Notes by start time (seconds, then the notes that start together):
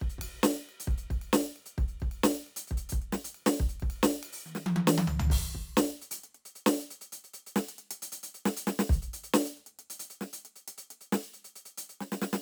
0.01 kick, ride
0.10 closed hi-hat
0.19 kick, ride
0.43 snare, ride
0.69 ride
0.80 closed hi-hat
0.88 kick, ride
0.98 closed hi-hat
1.11 kick, ride
1.22 ride
1.33 snare
1.44 ride
1.56 ride
1.66 closed hi-hat
1.78 kick, ride
1.88 closed hi-hat
2.00 kick, ride
2.12 ride
2.24 snare
2.35 ride
2.47 ride
2.56 closed hi-hat
2.67 closed hi-hat, kick
2.77 closed hi-hat
2.89 closed hi-hat, kick
3.02 closed hi-hat
3.13 snare
3.25 closed hi-hat
3.35 ride
3.46 snare
3.60 kick
3.69 closed hi-hat
3.80 kick, ride
3.90 ride
4.03 snare
4.23 ride
4.33 open hi-hat
4.46 hi-hat pedal, high tom
4.55 snare
4.66 high tom
4.76 high tom
4.87 snare
4.98 high tom
5.08 floor tom
5.20 floor tom
5.30 kick, crash
5.55 kick
5.77 snare
5.90 closed hi-hat
6.02 closed hi-hat
6.11 closed hi-hat
6.24 closed hi-hat
6.35 closed hi-hat
6.46 closed hi-hat
6.56 closed hi-hat
6.66 snare
6.80 closed hi-hat
6.91 closed hi-hat
7.01 closed hi-hat
7.12 closed hi-hat
7.24 closed hi-hat
7.34 closed hi-hat
7.47 closed hi-hat
7.56 snare
7.69 closed hi-hat
7.79 closed hi-hat
7.91 closed hi-hat
8.02 closed hi-hat
8.12 closed hi-hat
8.23 closed hi-hat
8.35 closed hi-hat
8.46 snare
8.57 closed hi-hat
8.67 snare
8.79 snare
8.90 closed hi-hat, kick
9.02 closed hi-hat
9.14 closed hi-hat
9.24 closed hi-hat
9.34 snare
9.46 closed hi-hat
9.57 closed hi-hat
9.67 closed hi-hat
9.79 closed hi-hat
9.90 closed hi-hat
10.00 closed hi-hat
10.10 closed hi-hat
10.21 snare
10.33 closed hi-hat
10.45 closed hi-hat
10.56 closed hi-hat
10.68 closed hi-hat
10.78 closed hi-hat
10.91 closed hi-hat
11.01 closed hi-hat
11.13 snare
11.23 closed hi-hat
11.34 closed hi-hat
11.45 closed hi-hat
11.56 closed hi-hat
11.66 closed hi-hat
11.78 closed hi-hat
11.90 closed hi-hat
12.01 snare
12.12 snare
12.22 snare
12.33 snare